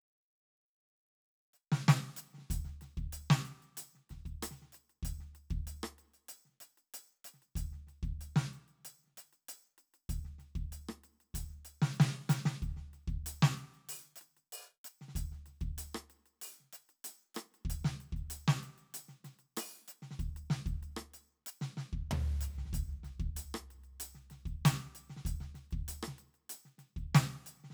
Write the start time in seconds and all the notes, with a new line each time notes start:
1.54 percussion
1.72 snare
1.88 snare
2.17 percussion
2.34 snare
2.38 snare
2.42 snare
2.50 kick, percussion
2.65 snare
2.81 snare, percussion
2.97 kick, percussion
3.13 percussion
3.30 snare
3.45 percussion
3.62 percussion
3.77 percussion
3.95 snare
4.09 kick, snare, percussion
4.25 kick, percussion
4.43 cross-stick, percussion
4.51 snare
4.62 snare
4.65 snare
4.72 percussion
4.75 percussion
4.90 percussion
5.03 kick, percussion
5.20 snare
5.33 snare, percussion
5.50 kick, percussion
5.67 percussion
5.83 cross-stick
5.98 percussion
6.14 percussion
6.29 percussion
6.45 snare
6.49 snare
6.60 percussion
6.62 percussion
6.77 percussion
6.94 percussion
7.24 percussion
7.27 percussion
7.34 snare
7.42 percussion
7.56 kick, percussion
7.72 snare
7.87 snare, percussion
8.03 kick, percussion
8.21 percussion
8.36 snare
8.53 percussion
8.68 percussion
8.85 percussion
9.04 snare
9.07 snare
9.17 percussion
9.19 percussion
9.33 percussion
9.49 percussion
9.78 percussion
9.94 percussion
10.09 kick, percussion
10.24 snare
10.39 snare, percussion
10.55 kick, percussion
10.72 percussion
10.89 cross-stick
11.04 percussion
11.20 percussion
11.34 kick, percussion
11.50 snare
11.65 percussion
11.82 snare
11.94 percussion
12.00 snare
12.29 snare, percussion
12.45 snare
12.62 kick, percussion
12.77 snare
12.93 snare, percussion
13.08 kick, percussion
13.26 percussion
13.42 snare
13.57 percussion
13.74 percussion
13.89 percussion
14.16 percussion
14.21 percussion
14.37 percussion
14.52 percussion
14.84 percussion
15.01 snare
15.08 snare
15.15 kick, percussion
15.32 snare
15.46 snare, percussion
15.61 kick, percussion
15.78 percussion
15.95 cross-stick
16.10 percussion
16.26 percussion
16.42 percussion
16.60 snare
16.64 snare
16.73 percussion
16.89 percussion
17.04 percussion
17.35 cross-stick, percussion
17.38 percussion
17.54 percussion
17.65 kick
17.70 percussion
17.85 snare
18.00 percussion
18.12 kick
18.16 percussion
18.30 percussion
18.48 snare
18.63 percussion
18.78 percussion
18.94 percussion
19.09 snare
19.24 snare, percussion
19.39 percussion
19.57 cross-stick, percussion
19.88 percussion
20.02 snare
20.11 snare
20.19 kick, percussion
20.36 percussion
20.50 snare
20.66 kick, percussion
20.83 percussion
20.97 cross-stick
21.01 cross-stick
21.14 percussion
21.46 percussion
21.61 snare
21.77 snare
21.93 kick
22.11 floor tom
22.41 percussion
22.44 percussion
22.58 snare
22.66 snare
22.73 kick, percussion
22.88 snare
23.03 snare, percussion
23.20 kick, percussion
23.37 percussion
23.54 cross-stick
23.71 percussion
23.84 percussion
24.00 percussion
24.15 snare
24.30 snare, percussion
24.46 kick, percussion
24.65 snare, percussion
24.73 snare
24.95 percussion
25.10 snare
25.17 snare
25.21 snare
25.25 kick, percussion
25.40 snare
25.55 snare, percussion
25.71 kick, percussion
25.88 percussion
26.03 cross-stick
26.08 snare
26.18 percussion
26.34 percussion
26.49 percussion
26.65 snare
26.78 snare, percussion
26.96 kick, percussion
27.15 snare, percussion
27.46 percussion
27.64 snare
27.70 snare